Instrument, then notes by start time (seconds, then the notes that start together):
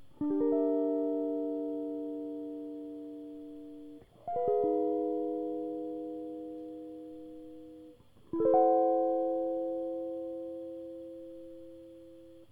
electric guitar
0.20 D4
0.30 G4
0.41 A#4
0.54 E5
4.29 F5
4.36 B4
4.48 G#4
4.64 D#4
8.35 E4
8.42 A4
8.49 C5
8.55 F#5